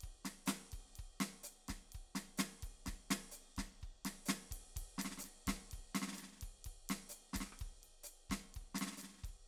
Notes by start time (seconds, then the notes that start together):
0.01 kick, ride
0.25 snare, ride
0.46 snare, hi-hat pedal, ride
0.72 kick, ride
0.87 snare
0.91 snare
0.96 kick, ride
1.20 snare, ride
1.44 hi-hat pedal, ride
1.69 kick, snare, ride
1.92 kick, ride
2.15 snare, ride
2.38 snare, hi-hat pedal, ride
2.63 kick, ride
2.86 kick, snare, ride
2.93 kick
3.11 snare, ride
3.32 hi-hat pedal, ride
3.57 kick, snare, ride
3.82 kick, ride
4.05 snare, ride
4.26 snare, hi-hat pedal, ride
4.51 kick, ride
4.76 kick, ride
4.82 kick
4.98 snare, ride
5.05 snare
5.11 snare
5.18 snare, hi-hat pedal
5.24 snare, ride
5.47 kick, snare, ride
5.52 kick
5.72 kick, ride
5.78 kick
5.95 snare, ride
6.02 snare
6.08 snare
6.12 snare, hi-hat pedal
6.17 snare, ride
6.23 snare
6.28 snare
6.32 snare
6.36 snare
6.39 snare, ride
6.42 kick, snare
6.50 snare
6.53 snare
6.55 snare
6.58 snare
6.65 kick, ride
6.89 snare, ride
7.10 hi-hat pedal, ride
7.34 kick, snare, ride
7.41 snare
7.47 cross-stick
7.53 cross-stick
7.58 kick, snare, ride
7.63 kick, snare
7.68 snare
7.83 ride
8.04 hi-hat pedal, ride
8.30 kick, snare, ride
8.55 kick, ride
8.61 kick
8.75 snare, ride
8.81 snare
8.87 snare
8.92 snare
8.98 snare, hi-hat pedal
9.02 snare, ride
9.09 snare
9.13 snare
9.18 snare
9.21 kick, snare
9.25 snare, ride
9.29 kick, snare
9.34 snare